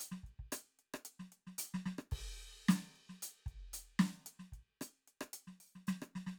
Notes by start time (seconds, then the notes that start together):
0.01 closed hi-hat
0.12 snare
0.24 kick, closed hi-hat
0.40 kick
0.53 closed hi-hat, cross-stick
0.80 closed hi-hat
0.95 cross-stick
1.06 closed hi-hat
1.20 snare
1.33 closed hi-hat
1.48 snare
1.59 closed hi-hat
1.75 snare
1.86 snare
1.99 cross-stick
2.12 kick, crash
2.40 closed hi-hat
2.69 closed hi-hat, snare
2.96 closed hi-hat
3.10 snare
3.23 closed hi-hat
3.47 kick, closed hi-hat
3.74 closed hi-hat
4.00 snare, closed hi-hat
4.27 closed hi-hat
4.40 snare
4.53 kick, closed hi-hat
4.82 closed hi-hat, cross-stick
5.08 closed hi-hat
5.22 cross-stick
5.34 closed hi-hat
5.48 snare
5.61 open hi-hat
5.76 snare
5.88 snare, hi-hat pedal
6.03 cross-stick
6.16 snare
6.27 snare